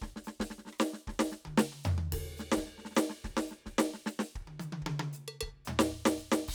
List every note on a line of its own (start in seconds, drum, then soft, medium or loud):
0.02 kick soft
0.02 snare soft
0.08 kick soft
0.16 snare soft
0.24 snare soft
0.24 hi-hat pedal soft
0.40 kick soft
0.40 snare medium
0.45 kick soft
0.58 snare soft
0.65 snare soft
0.67 snare soft
0.73 cross-stick soft
0.79 snare loud
0.79 hi-hat pedal soft
0.94 snare soft
1.07 kick soft
1.07 snare soft
1.14 kick soft
1.20 snare loud
1.30 snare soft
1.30 hi-hat pedal soft
1.45 kick soft
1.45 high tom medium
1.58 snare loud
1.72 high tom soft
1.84 floor tom loud
1.84 hi-hat pedal medium
1.98 high tom medium
2.13 kick medium
2.13 ride loud
2.21 kick soft
2.25 kick soft
2.38 snare soft
2.38 hi-hat pedal soft
2.52 snare loud
2.57 kick soft
2.57 snare soft
2.67 snare soft
2.72 snare soft
2.76 snare soft
2.78 snare soft
2.85 snare soft
2.91 snare soft
2.91 hi-hat pedal soft
2.97 snare loud
3.10 snare soft
3.25 kick soft
3.25 snare soft
3.31 kick soft
3.37 snare medium
3.48 snare soft
3.48 hi-hat pedal soft
3.66 kick soft
3.66 snare soft
3.79 snare loud
3.94 snare soft
4.06 snare medium
4.06 hi-hat pedal soft
4.19 snare medium
4.36 kick soft
4.42 kick soft
4.48 high tom medium
4.60 hi-hat pedal medium
4.60 high tom medium
4.73 high tom medium
4.82 kick soft
4.87 high tom loud
5.00 high tom loud
5.13 hi-hat pedal medium
5.28 percussion medium
5.41 kick soft
5.41 percussion loud
5.49 kick soft
5.65 hi-hat pedal medium
5.65 floor tom medium
5.79 snare loud
5.92 kick soft
6.06 snare loud
6.18 kick soft
6.18 hi-hat pedal soft
6.32 snare loud
6.48 kick medium
6.48 crash loud